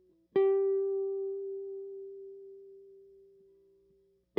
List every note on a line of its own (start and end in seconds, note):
0.38 3.51 G4